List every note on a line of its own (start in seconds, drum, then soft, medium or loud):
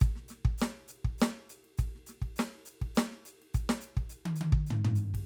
0.01 kick loud
0.01 hi-hat pedal medium
0.01 ride soft
0.16 snare soft
0.29 snare soft
0.29 hi-hat pedal medium
0.29 ride soft
0.45 kick medium
0.45 ride soft
0.59 snare loud
0.59 hi-hat pedal medium
0.59 ride medium
0.89 hi-hat pedal medium
0.89 ride soft
1.05 kick medium
1.05 ride soft
1.19 snare loud
1.19 hi-hat pedal soft
1.19 ride medium
1.50 hi-hat pedal medium
1.50 ride soft
1.65 ride soft
1.78 kick medium
1.78 hi-hat pedal medium
1.78 ride soft
1.96 snare soft
2.07 snare soft
2.07 hi-hat pedal medium
2.07 ride soft
2.22 kick medium
2.22 ride soft
2.37 snare loud
2.37 hi-hat pedal medium
2.37 ride medium
2.66 hi-hat pedal medium
2.66 ride soft
2.82 kick medium
2.82 ride soft
2.96 snare loud
2.96 hi-hat pedal medium
2.96 ride medium
3.12 snare soft
3.26 hi-hat pedal medium
3.26 ride soft
3.43 ride soft
3.55 kick medium
3.55 hi-hat pedal medium
3.55 ride soft
3.70 snare loud
3.81 hi-hat pedal medium
3.81 ride soft
3.98 kick medium
3.98 ride soft
4.10 hi-hat pedal medium
4.10 ride soft
4.26 high tom loud
4.36 hi-hat pedal medium
4.42 high tom loud
4.53 kick loud
4.67 hi-hat pedal soft
4.71 floor tom loud
4.85 floor tom loud
4.96 hi-hat pedal medium
4.96 ride soft
5.15 kick soft
5.15 ride medium